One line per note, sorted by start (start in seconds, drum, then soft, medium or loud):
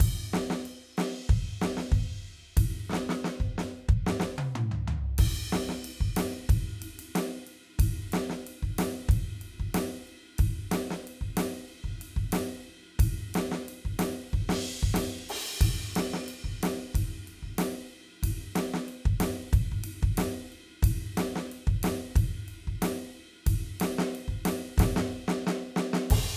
0.00 kick loud
0.00 ride medium
0.00 crash loud
0.32 snare loud
0.32 ride soft
0.50 snare loud
0.65 ride medium
0.97 snare loud
0.97 ride medium
1.29 kick loud
1.29 ride soft
1.62 snare loud
1.62 ride medium
1.77 snare medium
1.92 kick loud
1.92 ride medium
2.57 kick loud
2.57 ride loud
2.90 snare medium
2.93 snare loud
3.09 snare loud
3.24 snare loud
3.40 kick medium
3.58 snare loud
3.89 kick loud
4.07 snare loud
4.20 snare loud
4.38 high tom loud
4.55 mid tom loud
4.71 floor tom loud
4.88 floor tom loud
5.18 kick loud
5.18 ride loud
5.18 crash loud
5.52 snare loud
5.69 snare medium
5.84 ride medium
6.00 kick loud
6.16 snare loud
6.16 ride loud
6.49 kick loud
6.49 ride loud
6.82 ride medium
6.99 ride medium
7.15 snare loud
7.15 ride loud
7.47 ride medium
7.79 kick loud
7.79 ride loud
8.12 snare loud
8.12 ride medium
8.30 snare medium
8.47 ride medium
8.62 kick medium
8.78 snare loud
8.78 ride loud
9.09 kick loud
9.09 ride medium
9.41 ride medium
9.60 kick medium
9.74 snare loud
9.74 ride loud
10.07 ride soft
10.38 kick loud
10.38 ride loud
10.71 snare loud
10.71 ride loud
10.90 snare loud
11.07 ride medium
11.21 kick medium
11.37 snare loud
11.37 ride loud
11.69 ride soft
11.84 kick medium
12.01 ride medium
12.16 kick medium
12.32 snare loud
12.32 ride loud
12.99 kick loud
12.99 ride loud
13.34 snare loud
13.34 ride loud
13.51 snare loud
13.68 ride medium
13.85 kick medium
13.99 snare loud
13.99 ride loud
14.32 kick loud
14.32 ride soft
14.49 snare loud
14.49 ride loud
14.82 kick loud
14.94 snare loud
14.94 ride loud
15.29 crash loud
15.61 kick loud
15.61 ride loud
15.96 snare loud
15.96 ride loud
16.13 snare loud
16.28 ride medium
16.44 kick medium
16.63 snare loud
16.63 ride loud
16.94 kick loud
16.94 ride loud
17.27 ride medium
17.42 kick soft
17.58 snare loud
17.58 ride loud
17.91 ride soft
18.23 kick medium
18.23 ride loud
18.55 snare loud
18.55 ride loud
18.74 snare loud
18.88 ride medium
19.05 kick loud
19.20 snare loud
19.20 ride loud
19.53 kick loud
19.53 ride medium
19.72 kick medium
19.84 ride loud
20.02 kick loud
20.17 snare loud
20.17 ride loud
20.52 ride soft
20.82 kick loud
20.82 ride loud
21.17 snare loud
21.17 ride loud
21.36 snare loud
21.52 ride medium
21.67 kick loud
21.83 snare loud
21.83 ride loud
22.15 kick loud
22.15 ride medium
22.48 ride medium
22.67 kick medium
22.82 snare loud
22.82 ride loud
23.46 kick loud
23.46 ride loud
23.80 snare loud
23.80 ride loud
23.98 snare loud
24.15 ride medium
24.28 kick medium
24.45 snare loud
24.45 ride loud
24.78 kick loud
24.78 snare loud
24.78 ride loud
24.96 snare loud
25.28 snare loud
25.47 snare loud
25.76 snare loud
25.93 snare loud
26.10 kick loud
26.10 crash loud